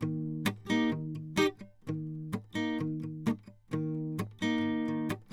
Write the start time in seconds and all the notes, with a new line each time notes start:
0.01 D#3 A#3
0.67 G4
0.71 A#3 D#4
0.93 D#3
1.16 D#3
1.38 D#4 G4
1.88 D#3
2.55 A#3 D#4
2.82 D#3
3.05 D#3
3.27 A#3
3.74 D#3
4.43 A#3 D#4
4.63 D#3
4.90 D#3